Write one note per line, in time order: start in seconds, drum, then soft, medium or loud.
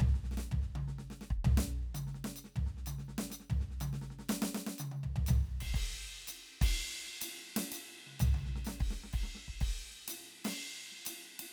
0.01 floor tom loud
0.09 snare soft
0.15 snare soft
0.25 snare soft
0.32 snare medium
0.38 snare medium
0.52 floor tom medium
0.63 snare soft
0.76 high tom loud
0.89 snare soft
0.99 snare soft
1.11 snare medium
1.22 snare medium
1.31 kick medium
1.45 floor tom loud
1.58 snare loud
1.82 snare soft
1.95 hi-hat pedal medium
1.95 high tom loud
2.08 snare soft
2.15 snare soft
2.25 snare medium
2.37 hi-hat pedal medium
2.45 snare soft
2.57 floor tom medium
2.67 snare soft
2.78 snare soft
2.87 hi-hat pedal medium
2.87 high tom medium
2.99 snare soft
3.09 snare soft
3.19 snare medium
3.31 snare medium
3.31 hi-hat pedal medium
3.41 snare soft
3.51 floor tom medium
3.61 snare soft
3.71 snare soft
3.81 hi-hat pedal medium
3.81 high tom loud
3.94 snare medium
4.02 snare medium
4.11 snare soft
4.20 snare medium
4.30 snare loud
4.30 hi-hat pedal medium
4.43 snare loud
4.55 snare medium
4.67 snare medium
4.79 hi-hat pedal medium
4.79 high tom loud
4.92 high tom medium
5.04 floor tom medium
5.17 floor tom medium
5.27 floor tom loud
5.27 hi-hat pedal loud
5.61 kick soft
5.61 ride medium
5.75 kick medium
5.75 crash medium
6.28 hi-hat pedal loud
6.28 ride medium
6.62 kick medium
6.62 ride loud
7.07 snare soft
7.22 hi-hat pedal loud
7.22 ride loud
7.57 snare loud
7.57 ride loud
7.73 hi-hat pedal medium
7.73 ride loud
8.07 high tom soft
8.20 floor tom loud
8.20 hi-hat pedal loud
8.35 high tom medium
8.46 snare soft
8.56 snare soft
8.65 snare medium
8.65 hi-hat pedal medium
8.81 kick medium
8.81 crash medium
8.91 snare medium
9.04 snare soft
9.14 kick medium
9.14 ride medium
9.24 snare soft
9.36 snare soft
9.49 kick soft
9.61 kick medium
9.61 crash medium
9.92 snare soft
10.09 hi-hat pedal loud
10.09 ride loud
10.45 snare medium
10.45 ride loud
10.61 ride soft
10.92 snare soft
10.96 snare soft
10.99 snare soft
11.06 hi-hat pedal loud
11.06 ride loud
11.40 ride loud
11.47 hi-hat pedal soft